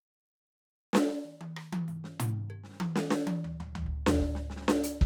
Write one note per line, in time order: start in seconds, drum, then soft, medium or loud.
0.93 snare loud
0.95 snare loud
1.09 snare soft
1.25 high tom soft
1.41 high tom medium
1.57 cross-stick medium
1.73 high tom loud
1.88 mid tom soft
2.04 snare medium
2.20 mid tom loud
2.50 percussion medium
2.64 snare soft
2.69 snare soft
2.73 snare soft
2.76 snare soft
2.80 high tom loud
2.96 snare loud
3.11 snare loud
3.27 high tom loud
3.44 floor tom medium
3.60 floor tom medium
3.75 floor tom loud
3.86 kick soft
4.06 snare loud
4.06 floor tom loud
4.20 kick medium
4.20 snare soft
4.35 snare medium
4.50 snare medium
4.56 snare medium
4.61 snare soft
4.66 snare soft
4.68 snare loud
4.84 closed hi-hat loud
5.01 kick loud